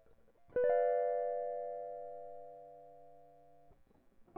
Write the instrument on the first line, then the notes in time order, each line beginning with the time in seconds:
electric guitar
0.55 B4
0.65 D5
0.70 F5